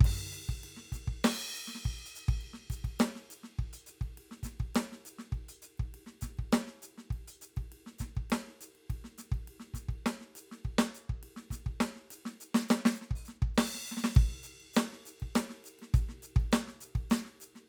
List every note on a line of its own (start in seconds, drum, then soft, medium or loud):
0.01 kick loud
0.01 ride medium
0.01 crash medium
0.32 hi-hat pedal medium
0.32 ride soft
0.49 kick medium
0.49 ride soft
0.64 ride medium
0.77 snare soft
0.92 kick soft
0.92 snare soft
0.92 hi-hat pedal medium
0.92 ride soft
1.08 kick medium
1.24 snare loud
1.24 crash loud
1.55 hi-hat pedal medium
1.55 ride soft
1.68 snare soft
1.75 snare soft
1.85 kick medium
1.85 ride soft
1.99 ride soft
2.06 open hi-hat medium
2.16 hi-hat pedal medium
2.28 kick medium
2.28 ride soft
2.41 ride soft
2.54 snare soft
2.70 kick soft
2.70 hi-hat pedal medium
2.70 ride medium
2.84 kick medium
2.84 ride soft
3.00 snare loud
3.00 ride medium
3.16 snare soft
3.30 hi-hat pedal medium
3.30 ride medium
3.44 snare soft
3.59 kick medium
3.59 ride soft
3.73 closed hi-hat medium
3.86 hi-hat pedal medium
3.86 ride soft
4.01 kick medium
4.01 ride soft
4.18 ride medium
4.31 snare soft
4.43 kick soft
4.43 snare soft
4.43 hi-hat pedal medium
4.43 ride soft
4.60 kick medium
4.60 ride soft
4.75 snare loud
4.75 ride medium
4.92 snare soft
5.05 hi-hat pedal medium
5.05 ride soft
5.19 snare soft
5.32 kick medium
5.32 ride soft
5.49 closed hi-hat medium
5.62 hi-hat pedal medium
5.62 ride soft
5.78 kick medium
5.78 ride soft
5.94 ride medium
6.06 snare soft
6.21 kick soft
6.21 snare soft
6.21 hi-hat pedal medium
6.21 ride soft
6.38 kick medium
6.38 ride soft
6.53 snare loud
6.53 ride medium
6.67 snare soft
6.82 hi-hat pedal medium
6.82 ride soft
6.98 snare soft
7.11 kick medium
7.11 ride soft
7.28 closed hi-hat medium
7.41 hi-hat pedal medium
7.41 ride soft
7.53 snare soft
7.57 kick medium
7.57 ride soft
7.72 ride medium
7.86 snare soft
7.99 kick soft
7.99 snare soft
7.99 hi-hat pedal medium
7.99 ride soft
8.16 kick medium
8.16 ride soft
8.30 snare loud
8.30 ride medium
8.48 snare soft
8.61 hi-hat pedal medium
8.61 ride soft
8.75 ride soft
8.90 kick medium
8.90 ride soft
9.04 snare soft
9.18 snare soft
9.18 hi-hat pedal medium
9.18 ride soft
9.32 kick medium
9.32 ride soft
9.48 ride medium
9.60 snare soft
9.74 kick soft
9.74 snare soft
9.74 hi-hat pedal medium
9.74 ride soft
9.89 kick medium
9.89 ride soft
10.06 snare medium
10.06 ride soft
10.21 snare soft
10.36 hi-hat pedal medium
10.36 ride medium
10.52 snare soft
10.65 kick medium
10.65 ride soft
10.79 snare loud
10.95 hi-hat pedal medium
11.10 kick medium
11.23 ride medium
11.37 snare soft
11.51 kick soft
11.51 snare soft
11.51 hi-hat pedal medium
11.51 ride soft
11.66 kick medium
11.66 ride soft
11.80 snare loud
11.80 ride medium
11.95 snare soft
12.11 hi-hat pedal medium
12.11 ride medium
12.25 snare medium
12.40 hi-hat pedal medium
12.55 snare loud
12.69 snare loud
12.69 hi-hat pedal medium
12.79 snare soft
12.85 snare loud
12.95 hi-hat pedal medium
13.01 snare soft
13.11 kick medium
13.15 open hi-hat medium
13.25 snare soft
13.25 hi-hat pedal medium
13.42 kick medium
13.55 snare loud
13.55 hi-hat pedal soft
13.55 crash loud
13.74 snare soft
13.87 hi-hat pedal medium
13.91 snare soft
13.97 snare medium
14.04 snare loud
14.15 kick loud
14.15 ride medium
14.30 snare soft
14.38 snare soft
14.43 hi-hat pedal medium
14.43 ride soft
14.60 ride soft
14.74 snare loud
14.74 hi-hat pedal medium
14.74 ride medium
14.92 snare soft
15.06 hi-hat pedal medium
15.06 ride soft
15.20 kick soft
15.20 ride soft
15.35 snare loud
15.35 hi-hat pedal medium
15.35 ride medium
15.50 snare soft
15.64 hi-hat pedal medium
15.64 ride soft
15.79 snare soft
15.79 ride soft
15.94 kick loud
15.94 hi-hat pedal medium
15.94 ride soft
16.09 snare soft
16.23 hi-hat pedal medium
16.23 ride soft
16.36 kick loud
16.36 ride soft
16.52 snare loud
16.52 hi-hat pedal medium
16.52 ride soft
16.68 snare soft
16.81 hi-hat pedal medium
16.81 ride soft
16.95 kick medium
16.95 ride soft
17.10 snare loud
17.10 hi-hat pedal medium
17.10 ride medium
17.25 snare soft
17.40 hi-hat pedal medium
17.40 ride soft
17.55 snare soft
17.55 ride soft